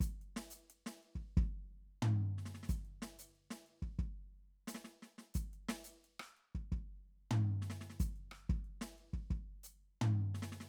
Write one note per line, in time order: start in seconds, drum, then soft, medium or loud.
0.01 kick medium
0.01 hi-hat pedal medium
0.22 closed hi-hat soft
0.37 snare medium
0.51 hi-hat pedal medium
0.70 closed hi-hat soft
0.87 snare medium
1.03 closed hi-hat soft
1.16 kick soft
1.38 kick medium
2.03 floor tom loud
2.38 snare soft
2.46 snare soft
2.55 snare soft
2.63 snare soft
2.69 kick medium
2.69 hi-hat pedal medium
2.85 closed hi-hat soft
3.02 snare medium
3.19 hi-hat pedal medium
3.36 closed hi-hat soft
3.51 snare soft
3.67 closed hi-hat soft
3.83 kick soft
3.99 kick soft
4.68 snare soft
4.68 hi-hat pedal medium
4.75 snare soft
4.85 snare soft
5.03 snare soft
5.19 snare soft
5.35 kick soft
5.35 hi-hat pedal medium
5.54 closed hi-hat soft
5.69 snare medium
5.85 hi-hat pedal medium
6.05 closed hi-hat soft
6.20 cross-stick medium
6.37 closed hi-hat soft
6.55 kick soft
6.72 kick soft
7.31 floor tom loud
7.62 snare soft
7.70 snare soft
7.81 snare soft
7.90 snare soft
8.00 kick medium
8.00 hi-hat pedal medium
8.16 closed hi-hat soft
8.32 cross-stick medium
8.50 kick medium
8.65 closed hi-hat soft
8.82 snare medium
8.98 closed hi-hat soft
9.14 kick soft
9.31 kick soft
9.64 hi-hat pedal medium
10.02 floor tom loud
10.35 snare soft
10.43 snare soft
10.52 snare soft
10.61 snare soft